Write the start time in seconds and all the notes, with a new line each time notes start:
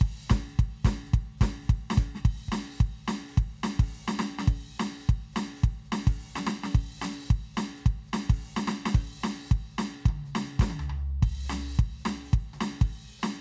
0.01 open hi-hat, kick
0.27 closed hi-hat, kick, snare, hi-hat pedal
0.48 open hi-hat
0.58 open hi-hat, kick
0.83 closed hi-hat, kick, snare, hi-hat pedal
1.06 closed hi-hat
1.13 open hi-hat, kick
1.37 kick, hi-hat pedal
1.42 closed hi-hat, snare
1.62 open hi-hat
1.69 open hi-hat, kick
1.90 snare, hi-hat pedal
1.97 closed hi-hat, kick
2.15 snare
2.25 kick, crash
2.47 kick, hi-hat pedal
2.52 closed hi-hat, snare
2.71 open hi-hat
2.80 open hi-hat, kick
3.04 snare, hi-hat pedal
3.09 closed hi-hat
3.28 open hi-hat
3.37 open hi-hat, kick
3.58 hi-hat pedal
3.63 closed hi-hat, snare
3.79 open hi-hat, kick
4.08 snare, hi-hat pedal
4.19 snare
4.39 snare
4.47 kick, crash
4.77 closed hi-hat, snare, hi-hat pedal
4.99 open hi-hat
5.08 open hi-hat, kick
5.33 closed hi-hat, snare, hi-hat pedal
5.55 open hi-hat
5.63 open hi-hat, kick
5.85 hi-hat pedal
5.92 snare
6.07 open hi-hat, kick
6.35 snare, hi-hat pedal
6.47 snare
6.63 snare
6.74 kick, crash
6.97 hi-hat pedal
7.01 closed hi-hat, snare
7.21 open hi-hat
7.30 open hi-hat, kick
7.54 closed hi-hat, snare, hi-hat pedal
7.77 closed hi-hat
7.86 open hi-hat, kick
8.07 hi-hat pedal
8.13 closed hi-hat, snare
8.29 open hi-hat, kick
8.56 snare, hi-hat pedal
8.67 snare
8.85 snare
8.94 kick, crash
9.20 snare, hi-hat pedal
9.24 closed hi-hat
9.44 open hi-hat
9.51 open hi-hat, kick
9.72 hi-hat pedal
9.78 closed hi-hat, snare
10.05 kick, high tom
10.25 hi-hat pedal
10.35 snare
10.59 kick, snare
10.70 high tom
10.79 floor tom, hi-hat pedal
10.89 floor tom
11.22 kick, crash
11.44 hi-hat pedal
11.49 closed hi-hat, snare
11.69 open hi-hat
11.79 kick, snare
12.00 hi-hat pedal
12.05 closed hi-hat, snare
12.25 open hi-hat
12.33 open hi-hat, kick
12.53 hi-hat pedal, high tom
12.61 snare
12.80 kick, crash
13.19 hi-hat pedal
13.23 closed hi-hat, snare